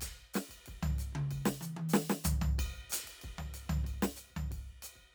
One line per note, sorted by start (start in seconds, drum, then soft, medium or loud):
0.01 kick soft
0.01 closed hi-hat medium
0.01 ride bell medium
0.34 snare medium
0.34 hi-hat pedal medium
0.34 ride medium
0.49 kick soft
0.49 ride bell medium
0.66 kick soft
0.66 ride medium
0.83 floor tom loud
0.99 hi-hat pedal medium
0.99 ride soft
1.13 kick soft
1.13 mid tom loud
1.31 kick soft
1.31 ride bell medium
1.46 snare loud
1.61 hi-hat pedal medium
1.61 high tom medium
1.77 high tom medium
1.89 kick soft
1.89 hi-hat pedal medium
1.94 snare loud
2.10 snare loud
2.24 kick soft
2.24 floor tom loud
2.24 hi-hat pedal loud
2.42 floor tom medium
2.59 kick medium
2.59 ride bell loud
2.80 kick soft
2.90 closed hi-hat loud
2.90 hi-hat pedal medium
2.90 ride loud
3.04 kick soft
3.04 ride medium
3.22 kick soft
3.22 ride bell medium
3.39 floor tom medium
3.54 hi-hat pedal medium
3.54 ride medium
3.66 kick soft
3.66 floor tom loud
3.84 kick soft
3.84 ride bell medium
4.03 snare loud
4.16 hi-hat pedal medium
4.16 ride bell soft
4.30 kick soft
4.37 floor tom medium
4.51 kick soft
4.51 ride medium
4.83 hi-hat pedal medium
4.83 ride bell medium
4.96 kick soft